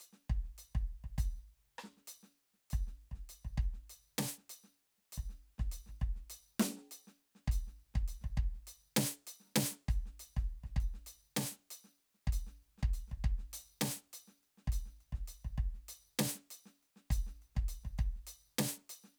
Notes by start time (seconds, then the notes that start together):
0.01 closed hi-hat
0.13 snare
0.29 kick, closed hi-hat
0.44 snare
0.58 closed hi-hat
0.75 kick
0.91 closed hi-hat
1.04 kick, snare
1.18 closed hi-hat, kick
1.37 snare
1.48 closed hi-hat
1.78 cross-stick
1.83 snare
1.97 snare
2.07 closed hi-hat
2.23 snare
2.37 closed hi-hat
2.54 snare
2.70 closed hi-hat, kick
2.87 snare
3.01 closed hi-hat
3.11 kick, snare
3.29 closed hi-hat
3.45 kick
3.58 kick, closed hi-hat
3.73 snare
3.90 closed hi-hat
4.18 snare
4.38 snare
4.49 closed hi-hat
4.64 snare
4.80 closed hi-hat
4.98 snare
5.12 closed hi-hat
5.17 kick
5.29 snare
5.43 closed hi-hat
5.58 kick, snare
5.71 closed hi-hat
5.86 kick, snare
6.00 kick, closed hi-hat
6.16 snare
6.30 closed hi-hat
6.59 snare
6.77 snare
6.91 closed hi-hat
7.07 snare
7.20 closed hi-hat
7.35 snare
7.48 closed hi-hat, kick
7.67 snare
7.79 closed hi-hat
7.94 kick, snare
8.08 closed hi-hat
8.21 kick, snare
8.37 kick, closed hi-hat
8.54 snare
8.67 closed hi-hat
8.96 snare
9.02 cross-stick
9.27 closed hi-hat
9.40 snare
9.44 snare
9.47 snare
9.56 snare
9.71 snare
9.88 closed hi-hat, kick
10.06 snare
10.19 closed hi-hat
10.37 kick, snare
10.63 kick, snare
10.76 kick, closed hi-hat
10.94 snare
11.06 closed hi-hat
11.36 snare
11.51 snare
11.55 snare
11.70 closed hi-hat
11.84 snare
11.98 closed hi-hat
12.14 snare
12.27 kick
12.32 closed hi-hat
12.46 snare
12.62 closed hi-hat
12.78 snare
12.83 kick
12.93 closed hi-hat
13.08 kick, snare
13.23 kick, closed hi-hat
13.38 snare
13.53 closed hi-hat
13.81 snare
13.96 snare
14.00 snare
14.13 closed hi-hat
14.28 snare
14.43 closed hi-hat
14.57 snare
14.67 kick
14.72 closed hi-hat
14.86 snare
15.00 closed hi-hat
15.12 kick, snare
15.28 closed hi-hat
15.44 kick, snare
15.58 kick
15.62 closed hi-hat
15.74 snare
15.88 closed hi-hat
16.19 snare
16.35 snare
16.50 closed hi-hat
16.66 snare
16.83 closed hi-hat
16.96 snare
17.10 closed hi-hat, kick
17.27 snare
17.42 closed hi-hat
17.55 kick, snare
17.68 closed hi-hat
17.84 kick, snare
17.98 kick, closed hi-hat
18.15 snare
18.27 closed hi-hat
18.58 snare
18.65 snare
18.77 snare
18.89 closed hi-hat
19.04 snare